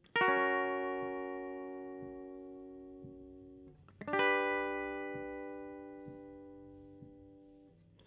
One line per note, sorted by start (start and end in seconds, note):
0.17 3.31 A#4
0.22 3.76 F#4
0.29 3.73 C#4
4.03 4.09 G#3
4.09 7.72 D4
4.14 7.62 G4
4.20 7.50 B4